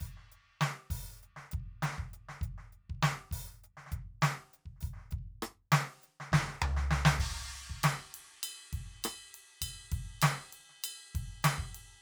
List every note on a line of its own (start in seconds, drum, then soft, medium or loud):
0.01 open hi-hat medium
0.01 kick soft
0.17 snare soft
0.27 snare soft
0.28 closed hi-hat soft
0.28 snare soft
0.60 closed hi-hat medium
0.60 snare medium
0.60 hi-hat pedal soft
0.91 open hi-hat medium
0.91 kick soft
0.97 kick soft
1.18 hi-hat pedal soft
1.23 closed hi-hat soft
1.37 snare soft
1.43 snare soft
1.52 closed hi-hat medium
1.52 kick soft
1.60 kick soft
1.83 closed hi-hat medium
1.83 snare medium
1.94 snare soft
1.99 kick soft
2.08 hi-hat pedal soft
2.14 closed hi-hat medium
2.29 snare soft
2.42 closed hi-hat medium
2.42 kick soft
2.48 kick soft
2.58 snare soft
2.73 closed hi-hat soft
2.90 kick soft
2.95 kick soft
3.02 closed hi-hat medium
3.02 snare loud
3.02 hi-hat pedal soft
3.32 open hi-hat medium
3.32 kick soft
3.47 snare soft
3.64 closed hi-hat soft
3.77 snare soft
3.87 snare soft
3.92 closed hi-hat medium
3.92 kick soft
4.22 closed hi-hat medium
4.22 snare loud
4.22 hi-hat pedal soft
4.54 closed hi-hat soft
4.66 kick soft
4.76 snare soft
4.81 open hi-hat medium
4.81 kick soft
4.91 kick soft
4.91 snare soft
4.94 kick soft
4.94 snare soft
5.00 snare soft
5.11 closed hi-hat medium
5.11 kick soft
5.19 kick soft
5.43 closed hi-hat medium
5.43 cross-stick medium
5.72 closed hi-hat loud
5.72 snare loud
6.02 closed hi-hat soft
6.02 hi-hat pedal soft
6.20 snare soft
6.32 kick soft
6.32 snare loud
6.38 kick soft
6.48 snare soft
6.61 hi-hat pedal medium
6.61 floor tom loud
6.77 snare medium
6.90 snare loud
6.90 hi-hat pedal soft
7.05 snare loud
7.19 kick medium
7.19 crash loud
7.30 kick soft
7.70 kick soft
7.83 snare loud
7.83 hi-hat pedal medium
7.83 ride bell loud
8.14 ride medium
8.43 hi-hat pedal medium
8.43 ride bell loud
8.73 kick soft
8.73 ride medium
8.79 kick soft
9.03 cross-stick medium
9.03 hi-hat pedal medium
9.03 ride bell loud
9.35 ride medium
9.62 kick soft
9.62 hi-hat pedal soft
9.62 ride bell loud
9.92 kick medium
9.92 ride medium
10.21 snare loud
10.21 hi-hat pedal soft
10.21 ride bell loud
10.35 snare soft
10.53 ride medium
10.70 snare soft
10.76 snare soft
10.83 hi-hat pedal soft
10.83 ride bell loud
11.15 kick soft
11.15 ride medium
11.24 kick soft
11.43 snare loud
11.43 hi-hat pedal soft
11.43 ride bell loud
11.56 kick soft
11.56 snare soft
11.75 ride medium